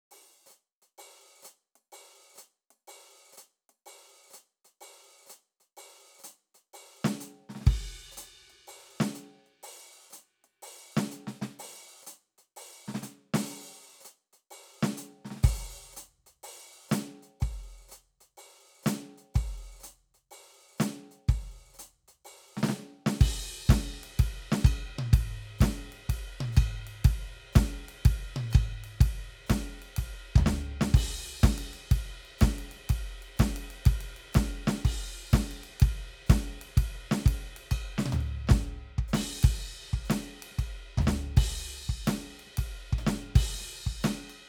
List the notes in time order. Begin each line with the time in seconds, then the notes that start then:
0.11 open hi-hat
0.46 closed hi-hat, hi-hat pedal
0.82 closed hi-hat
0.98 open hi-hat
1.42 closed hi-hat, hi-hat pedal
1.76 closed hi-hat
1.92 open hi-hat
2.35 closed hi-hat, hi-hat pedal
2.71 closed hi-hat
2.87 open hi-hat
3.32 hi-hat pedal
3.37 closed hi-hat
3.69 closed hi-hat
3.86 open hi-hat
4.30 closed hi-hat, hi-hat pedal
4.65 closed hi-hat
4.81 open hi-hat
5.26 closed hi-hat, hi-hat pedal
5.60 closed hi-hat
5.77 open hi-hat
6.19 hi-hat pedal
6.24 closed hi-hat
6.54 closed hi-hat
6.73 open hi-hat
7.04 snare, hi-hat pedal
7.20 closed hi-hat
7.49 snare
7.55 snare
7.60 snare
7.66 kick, snare, crash
8.11 hi-hat pedal
8.17 closed hi-hat
8.50 closed hi-hat
8.67 open hi-hat
9.00 snare
9.05 hi-hat pedal
9.15 closed hi-hat
9.46 closed hi-hat
9.63 open hi-hat
10.10 closed hi-hat, hi-hat pedal
10.44 closed hi-hat
10.62 open hi-hat
10.97 snare
11.04 hi-hat pedal
11.11 closed hi-hat
11.27 snare
11.41 snare
11.59 open hi-hat
12.02 hi-hat pedal
12.07 closed hi-hat
12.38 closed hi-hat
12.56 open hi-hat
12.88 snare
12.94 snare, hi-hat pedal
13.02 closed hi-hat, snare
13.34 open hi-hat, snare
14.00 hi-hat pedal
14.05 closed hi-hat
14.33 closed hi-hat
14.51 open hi-hat
14.83 snare, hi-hat pedal
14.97 closed hi-hat
15.25 snare
15.30 snare
15.35 snare
15.42 open hi-hat, kick, snare
15.93 closed hi-hat, hi-hat pedal
16.26 closed hi-hat
16.43 open hi-hat
16.89 closed hi-hat, snare, hi-hat pedal
17.22 closed hi-hat
17.40 open hi-hat, kick
17.89 closed hi-hat, hi-hat pedal
18.21 closed hi-hat
18.37 open hi-hat
18.83 closed hi-hat, snare, hi-hat pedal
19.18 closed hi-hat
19.34 open hi-hat, kick
19.80 closed hi-hat, hi-hat pedal
20.14 closed hi-hat
20.31 open hi-hat
20.78 closed hi-hat, snare, hi-hat pedal
21.11 closed hi-hat
21.28 open hi-hat, kick
21.74 hi-hat pedal
21.79 closed hi-hat
22.08 closed hi-hat
22.25 open hi-hat
22.57 snare
22.62 snare, hi-hat pedal
22.69 snare
23.06 snare
23.21 kick, crash
23.66 kick, snare, hi-hat pedal
23.71 ride
24.03 ride
24.19 kick, ride
24.52 snare
24.58 hi-hat pedal
24.64 kick, ride bell
24.98 high tom
25.13 kick, ride
25.58 kick, snare, hi-hat pedal, ride
25.92 ride
26.09 kick, ride
26.40 high tom
26.52 hi-hat pedal
26.57 kick, ride bell
26.87 ride
27.05 kick, ride
27.53 kick, snare, hi-hat pedal, ride
27.89 ride
28.05 kick, ride
28.36 high tom
28.50 hi-hat pedal, ride bell
28.55 kick
28.84 ride
29.01 kick, ride
29.46 kick, snare, hi-hat pedal, ride
29.82 ride
29.97 kick, ride
30.35 kick, floor tom, hi-hat pedal
30.46 snare
30.81 snare
30.94 kick, crash
31.26 ride
31.39 hi-hat pedal
31.43 kick, snare, ride
31.58 ride
31.73 snare, ride
31.77 snare
31.79 snare
31.91 kick, ride
32.25 ride
32.38 kick, snare, hi-hat pedal, ride
32.58 ride
32.71 ride
32.76 snare
32.78 snare
32.89 kick, ride
33.22 ride
33.37 kick, snare, hi-hat pedal, ride
33.56 ride
33.70 ride
33.84 kick, snare, ride
34.01 ride
34.16 ride
34.32 kick, snare, hi-hat pedal, ride
34.67 snare
34.85 kick, crash
35.29 kick, snare, hi-hat pedal, ride
35.51 ride
35.64 ride
35.75 snare
35.80 kick, ride
36.26 kick, snare, hi-hat pedal, ride
36.61 ride
36.77 kick, ride
37.11 snare
37.19 hi-hat pedal
37.26 kick, ride
37.56 ride
37.71 kick, ride bell
37.98 snare
38.06 high tom
38.11 floor tom, hi-hat pedal
38.21 ride
38.47 kick, snare, high tom
38.98 kick
39.08 hi-hat pedal
39.13 snare, crash
39.43 kick, ride
39.58 snare
39.63 snare
39.93 kick
40.05 hi-hat pedal
40.10 snare, ride
40.42 ride
40.51 snare
40.55 kick, snare, ride bell
40.97 kick, floor tom, hi-hat pedal
41.07 snare
41.37 kick, crash
41.51 snare
41.89 kick
42.06 snare, hi-hat pedal, ride
42.39 ride
42.46 snare
42.49 snare
42.57 kick, ride
42.93 kick
42.98 hi-hat pedal, high tom
43.07 snare
43.35 kick, crash
43.53 snare
43.60 snare
43.63 snare
43.86 kick
44.00 hi-hat pedal
44.04 snare, ride bell
44.30 ride bell